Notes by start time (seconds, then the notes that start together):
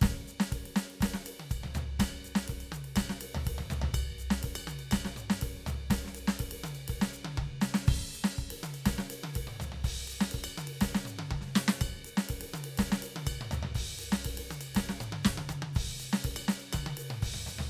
0.01 kick, snare, hi-hat pedal, ride
0.27 hi-hat pedal, ride
0.40 snare
0.51 kick, hi-hat pedal, ride
0.65 ride
0.76 snare, hi-hat pedal
0.90 ride
1.00 kick, snare, hi-hat pedal, ride
1.14 snare
1.25 hi-hat pedal, ride
1.40 high tom
1.49 kick, hi-hat pedal, ride bell
1.63 floor tom
1.74 floor tom, hi-hat pedal
1.99 kick, snare, hi-hat pedal, ride bell
2.24 hi-hat pedal, ride
2.35 snare
2.48 kick, hi-hat pedal, ride
2.60 ride bell
2.72 hi-hat pedal, high tom
2.84 ride
2.96 kick, snare, hi-hat pedal, ride bell
3.09 snare
3.20 hi-hat pedal, ride
3.35 floor tom
3.44 kick, hi-hat pedal, ride
3.58 floor tom
3.70 floor tom, hi-hat pedal
3.82 floor tom
3.94 kick, hi-hat pedal, ride bell
4.18 hi-hat pedal, ride
4.30 snare
4.42 kick, hi-hat pedal, ride
4.55 ride bell
4.67 hi-hat pedal, high tom
4.79 ride bell
4.91 kick, snare, hi-hat pedal, ride bell
5.05 snare
5.16 hi-hat pedal, mid tom
5.30 snare
5.40 kick, hi-hat pedal, ride
5.66 floor tom, hi-hat pedal
5.90 kick, snare, hi-hat pedal, ride
6.04 snare
6.07 snare
6.15 hi-hat pedal, ride
6.27 snare
6.39 kick, hi-hat pedal, ride
6.51 ride
6.64 hi-hat pedal, high tom
6.75 ride bell
6.88 kick, hi-hat pedal, ride
7.01 snare
7.12 hi-hat pedal
7.24 high tom
7.35 kick, hi-hat pedal, high tom
7.61 snare, hi-hat pedal
7.74 snare
7.86 kick, hi-hat pedal, crash
8.13 hi-hat pedal
8.24 snare
8.37 kick, hi-hat pedal
8.50 ride
8.63 hi-hat pedal, high tom
8.74 ride bell
8.86 kick, snare, hi-hat pedal, ride
8.98 snare
9.10 hi-hat pedal, ride
9.23 high tom
9.33 kick, hi-hat pedal, ride
9.47 mid tom
9.54 mid tom
9.60 floor tom, hi-hat pedal
9.72 floor tom
9.84 kick, hi-hat pedal, ride
10.07 hi-hat pedal, ride
10.20 snare
10.31 kick, hi-hat pedal, ride
10.44 ride bell
10.57 hi-hat pedal, high tom
10.67 ride
10.81 kick, snare, hi-hat pedal, ride
10.95 snare
11.05 hi-hat pedal, mid tom
11.19 high tom
11.28 kick, hi-hat pedal, high tom
11.41 snare
11.46 snare
11.50 kick, snare
11.55 snare, hi-hat pedal
11.68 snare
11.78 kick, hi-hat pedal, ride bell
12.05 hi-hat pedal, ride
12.17 snare
12.29 kick, hi-hat pedal, ride
12.41 ride
12.53 hi-hat pedal, high tom
12.64 ride
12.78 kick, snare, hi-hat pedal, ride
12.92 snare
13.02 hi-hat pedal, ride
13.16 high tom
13.26 kick, hi-hat pedal, ride bell
13.41 mid tom
13.51 floor tom, hi-hat pedal
13.63 floor tom
13.75 kick, hi-hat pedal, ride
13.99 hi-hat pedal, ride
14.12 snare
14.24 kick, hi-hat pedal, ride
14.37 ride
14.51 hi-hat pedal, high tom
14.61 ride bell
14.75 kick, snare, hi-hat pedal, ride
14.89 snare
15.00 kick, hi-hat pedal, mid tom
15.12 high tom
15.23 kick, snare, hi-hat pedal
15.37 high tom
15.49 kick, hi-hat pedal, high tom
15.62 cross-stick, high tom
15.73 kick, hi-hat pedal, ride
16.00 hi-hat pedal, ride bell
16.13 snare
16.24 kick, hi-hat pedal, ride
16.36 ride bell
16.48 snare, hi-hat pedal
16.60 ride bell
16.73 kick, hi-hat pedal, high tom, ride bell
16.86 high tom
16.97 hi-hat pedal, ride
17.10 mid tom
17.22 kick, hi-hat pedal, ride
17.34 floor tom
17.46 floor tom, hi-hat pedal
17.58 floor tom